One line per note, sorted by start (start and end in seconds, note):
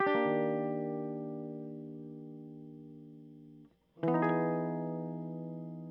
0.00 3.65 G4
0.07 3.70 D4
0.15 3.70 A#3
0.26 3.67 D#3
4.04 5.90 E3
4.08 5.90 B3
4.14 5.90 D#4
4.22 5.90 G#4